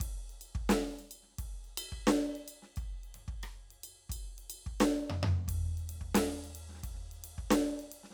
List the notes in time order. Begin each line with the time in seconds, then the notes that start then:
0.01 kick, ride
0.30 ride
0.42 ride bell
0.56 kick
0.70 snare, ride bell
0.99 ride bell
1.12 ride bell
1.23 snare
1.28 snare
1.32 snare
1.39 kick, ride
1.52 snare
1.65 floor tom, ride
1.78 ride bell
1.93 kick
2.08 snare, ride
2.36 ride
2.49 ride bell
2.63 snare
2.77 kick, ride bell
2.93 snare
3.04 ride
3.15 snare, ride, floor tom
3.29 kick
3.44 cross-stick, floor tom, ride
3.71 ride
3.84 ride bell
4.10 kick, ride bell
4.39 ride
4.51 ride bell
4.67 kick
4.81 snare, ride bell
5.10 mid tom
5.24 mid tom
5.49 kick, ride
5.78 ride
5.84 snare
5.90 ride
6.01 kick
6.15 snare, ride
6.45 snare, ride
6.56 ride
6.69 snare
6.75 snare
6.77 snare
6.84 kick, ride
6.95 snare
7.00 snare
7.12 ride
7.25 ride
7.39 kick
7.51 snare, ride
7.80 ride
7.92 ride
8.04 snare
8.11 snare